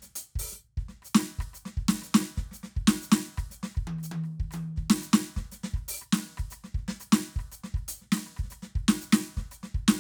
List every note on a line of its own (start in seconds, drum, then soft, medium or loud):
0.01 snare soft
0.01 hi-hat pedal medium
0.03 snare soft
0.17 closed hi-hat loud
0.37 open hi-hat loud
0.37 kick soft
0.53 snare soft
0.53 hi-hat pedal soft
0.57 closed hi-hat soft
0.78 kick soft
0.78 snare soft
1.03 cross-stick soft
1.03 snare soft
1.03 hi-hat pedal medium
1.16 snare loud
1.21 cross-stick medium
1.29 snare soft
1.40 kick soft
1.40 cross-stick medium
1.55 cross-stick soft
1.55 hi-hat pedal medium
1.67 snare soft
1.78 kick soft
1.78 snare soft
1.90 snare loud
2.03 cross-stick soft
2.03 hi-hat pedal medium
2.15 snare loud
2.21 snare soft
2.27 snare soft
2.38 kick soft
2.38 snare soft
2.52 snare soft
2.52 hi-hat pedal medium
2.64 snare soft
2.77 kick soft
2.77 cross-stick soft
2.89 snare loud
3.01 snare soft
3.01 hi-hat pedal medium
3.13 snare loud
3.17 cross-stick soft
3.27 snare soft
3.39 kick soft
3.39 cross-stick medium
3.51 snare soft
3.51 hi-hat pedal medium
3.64 snare medium
3.76 kick soft
3.76 cross-stick soft
3.88 high tom medium
4.00 cross-stick soft
4.04 hi-hat pedal medium
4.13 high tom medium
4.25 cross-stick soft
4.41 kick soft
4.52 cross-stick soft
4.52 hi-hat pedal medium
4.52 high tom medium
4.77 kick soft
4.77 snare soft
4.91 snare loud
5.03 cross-stick soft
5.03 hi-hat pedal medium
5.14 snare loud
5.27 cross-stick soft
5.38 kick soft
5.38 snare soft
5.45 snare soft
5.53 cross-stick soft
5.53 snare soft
5.53 hi-hat pedal medium
5.65 snare medium
5.75 kick soft
5.75 cross-stick soft
5.89 open hi-hat loud
5.98 hi-hat pedal soft
6.02 cross-stick soft
6.14 snare loud
6.19 cross-stick soft
6.27 snare soft
6.39 kick soft
6.39 cross-stick medium
6.52 cross-stick soft
6.52 snare soft
6.52 hi-hat pedal medium
6.65 snare soft
6.76 kick soft
6.76 snare soft
6.89 snare medium
6.99 snare soft
6.99 hi-hat pedal medium
7.01 cross-stick soft
7.01 snare soft
7.13 cross-stick medium
7.13 snare loud
7.29 snare soft
7.37 kick soft
7.37 cross-stick soft
7.53 cross-stick soft
7.53 hi-hat pedal medium
7.65 snare soft
7.75 kick soft
7.75 cross-stick soft
7.89 open hi-hat loud
7.98 hi-hat pedal soft
8.02 snare soft
8.13 snare loud
8.18 cross-stick medium
8.28 cross-stick soft
8.38 kick soft
8.38 cross-stick soft
8.45 snare soft
8.51 cross-stick soft
8.51 snare soft
8.51 closed hi-hat soft
8.51 hi-hat pedal medium
8.64 snare soft
8.76 kick soft
8.76 cross-stick soft
8.89 snare loud
8.99 snare soft
9.02 snare soft
9.02 hi-hat pedal medium
9.14 snare loud
9.28 snare soft
9.38 kick soft
9.38 snare soft
9.52 cross-stick soft
9.52 closed hi-hat soft
9.52 hi-hat pedal medium
9.64 snare soft
9.76 kick soft
9.76 cross-stick soft
9.89 snare loud